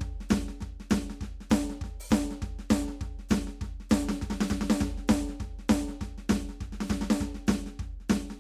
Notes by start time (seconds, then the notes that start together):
0.01 kick, snare
0.21 snare
0.29 kick, hi-hat pedal
0.49 snare
0.61 kick, snare
0.80 snare
0.90 kick, snare, hi-hat pedal
1.10 snare
1.21 kick, snare
1.41 snare
1.50 kick, snare, hi-hat pedal
1.70 snare
1.82 kick, snare
2.00 open hi-hat
2.10 kick, snare, hi-hat pedal
2.31 snare
2.42 kick, snare
2.59 snare
2.70 kick, snare, hi-hat pedal
2.88 snare
3.01 kick, snare
3.19 snare
3.29 kick, snare, hi-hat pedal
3.48 snare
3.61 kick, snare
3.80 snare
3.90 kick, snare, hi-hat pedal
4.09 snare
4.22 kick, snare
4.30 snare
4.41 snare
4.48 kick, snare, hi-hat pedal
4.61 snare
4.70 snare
4.81 kick, snare
4.98 snare
5.08 kick, snare, hi-hat pedal
5.29 snare
5.40 kick, snare
5.59 snare
5.69 kick, snare, hi-hat pedal
5.89 snare
6.01 kick, snare
6.18 snare
6.29 kick, snare, hi-hat pedal
6.49 snare
6.61 kick, snare
6.73 snare
6.81 snare
6.88 kick, snare, hi-hat pedal
7.01 snare
7.11 snare
7.21 kick, snare
7.35 snare
7.47 kick, snare, hi-hat pedal
7.66 snare
7.80 kick, snare
8.00 snare
8.09 kick, snare, hi-hat pedal
8.30 snare